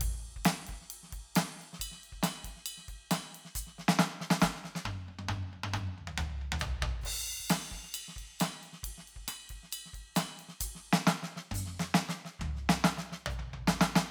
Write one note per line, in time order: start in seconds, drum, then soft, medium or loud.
0.01 kick medium
0.01 hi-hat pedal soft
0.01 ride loud
0.19 kick soft
0.36 kick soft
0.43 kick soft
0.43 snare loud
0.43 ride loud
0.48 hi-hat pedal medium
0.67 kick soft
0.67 ride medium
0.75 kick soft
0.81 snare soft
0.90 hi-hat pedal medium
0.90 ride medium
1.03 snare soft
1.09 kick soft
1.09 snare soft
1.09 ride medium
1.19 kick soft
1.35 snare loud
1.35 hi-hat pedal medium
1.35 ride loud
1.61 ride soft
1.73 snare soft
1.80 kick soft
1.80 hi-hat pedal soft
1.80 ride bell loud
1.86 kick soft
1.92 snare soft
1.97 snare soft
2.04 ride soft
2.12 kick soft
2.23 snare loud
2.23 hi-hat pedal medium
2.23 ride bell loud
2.44 kick soft
2.44 ride medium
2.50 kick soft
2.57 snare soft
2.66 hi-hat pedal soft
2.66 ride bell loud
2.78 snare soft
2.84 kick soft
2.84 snare soft
2.89 ride soft
3.11 snare loud
3.11 hi-hat pedal soft
3.11 ride bell loud
3.35 ride medium
3.45 snare soft
3.55 kick soft
3.55 hi-hat pedal loud
3.55 ride bell medium
3.62 kick soft
3.67 snare soft
3.78 snare medium
3.88 snare loud
3.99 snare loud
4.09 snare soft
4.21 snare medium
4.31 snare loud
4.40 kick soft
4.40 snare loud
4.40 hi-hat pedal medium
4.47 cross-stick soft
4.55 snare soft
4.64 snare medium
4.75 snare medium
4.85 kick soft
4.85 high tom loud
4.91 kick soft
5.01 high tom soft
5.08 high tom soft
5.19 high tom loud
5.28 kick soft
5.28 hi-hat pedal soft
5.28 high tom loud
5.43 high tom soft
5.53 high tom soft
5.64 high tom loud
5.73 kick soft
5.73 hi-hat pedal soft
5.78 kick soft
5.87 high tom soft
5.98 mid tom soft
6.08 mid tom medium
6.18 kick soft
6.18 hi-hat pedal soft
6.18 mid tom loud
6.30 mid tom soft
6.42 mid tom soft
6.52 mid tom loud
6.60 hi-hat pedal medium
6.60 floor tom loud
6.82 kick soft
6.82 floor tom loud
7.02 kick medium
7.02 hi-hat pedal soft
7.02 crash loud
7.19 kick soft
7.40 kick soft
7.50 snare loud
7.50 hi-hat pedal medium
7.50 ride bell loud
7.58 snare soft
7.71 kick soft
7.71 ride soft
7.83 snare soft
7.94 hi-hat pedal soft
7.94 ride bell loud
8.08 snare soft
8.16 kick soft
8.16 ride soft
8.22 kick soft
8.39 snare loud
8.39 hi-hat pedal medium
8.39 ride bell loud
8.63 ride soft
8.73 snare soft
8.83 kick soft
8.83 hi-hat pedal soft
8.83 ride loud
8.90 kick soft
8.98 snare soft
9.08 ride soft
9.16 kick soft
9.28 cross-stick medium
9.28 hi-hat pedal soft
9.28 ride bell loud
9.50 kick soft
9.50 ride medium
9.63 snare soft
9.72 hi-hat pedal medium
9.72 ride bell loud
9.86 snare soft
9.94 kick soft
9.94 ride soft
10.00 kick soft
10.15 snare loud
10.15 hi-hat pedal medium
10.15 ride bell loud
10.39 ride soft
10.49 snare soft
10.61 kick medium
10.61 hi-hat pedal loud
10.61 ride loud
10.68 kick soft
10.75 snare soft
10.93 snare loud
11.07 snare loud
11.23 snare medium
11.37 snare medium
11.51 kick soft
11.51 hi-hat pedal loud
11.51 high tom loud
11.58 kick soft
11.66 snare soft
11.80 snare loud
11.94 snare loud
12.09 snare medium
12.25 snare medium
12.40 kick soft
12.40 mid tom loud
12.46 kick soft
12.49 kick soft
12.56 snare soft
12.69 snare loud
12.84 snare loud
12.98 snare medium
12.98 hi-hat pedal soft
13.12 snare medium
13.26 hi-hat pedal soft
13.26 floor tom loud
13.39 floor tom medium
13.54 floor tom medium
13.68 snare loud
13.81 snare loud
13.96 snare loud